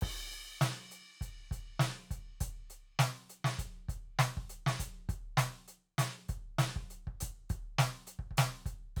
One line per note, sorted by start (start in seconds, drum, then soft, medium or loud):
0.01 kick medium
0.01 hi-hat pedal medium
0.01 crash loud
0.31 closed hi-hat medium
0.61 closed hi-hat loud
0.61 snare loud
0.91 closed hi-hat medium
1.21 closed hi-hat medium
1.21 kick medium
1.51 closed hi-hat medium
1.51 kick medium
1.79 closed hi-hat medium
1.79 snare loud
2.11 closed hi-hat medium
2.11 kick medium
2.41 closed hi-hat loud
2.41 kick medium
2.70 closed hi-hat medium
2.99 closed hi-hat loud
2.99 snare loud
3.30 closed hi-hat medium
3.44 snare loud
3.59 closed hi-hat medium
3.59 kick medium
3.89 closed hi-hat medium
3.89 kick medium
4.19 closed hi-hat medium
4.19 snare loud
4.37 kick medium
4.50 closed hi-hat medium
4.66 snare loud
4.80 closed hi-hat loud
4.80 kick medium
5.09 closed hi-hat medium
5.09 kick medium
5.37 closed hi-hat loud
5.37 snare loud
5.68 closed hi-hat medium
5.98 closed hi-hat loud
5.98 snare loud
6.29 closed hi-hat medium
6.29 kick medium
6.58 closed hi-hat medium
6.58 snare loud
6.76 kick medium
6.90 closed hi-hat medium
7.07 kick medium
7.20 closed hi-hat loud
7.20 kick medium
7.50 closed hi-hat medium
7.50 kick medium
7.79 closed hi-hat medium
7.79 snare loud
8.07 closed hi-hat medium
8.19 kick medium
8.31 kick soft
8.37 closed hi-hat loud
8.37 snare loud
8.66 closed hi-hat medium
8.66 kick medium
8.96 kick medium
8.96 crash medium